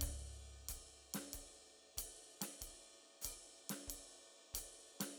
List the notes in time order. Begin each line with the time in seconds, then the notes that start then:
0.01 kick, ride
0.68 kick, hi-hat pedal, ride
1.14 snare, ride
1.33 kick, ride
1.97 kick, hi-hat pedal, ride
2.41 snare, ride
2.61 kick, ride
3.21 kick, hi-hat pedal, ride
3.69 snare, ride
3.87 kick, ride
4.54 kick, hi-hat pedal, ride
5.00 snare, ride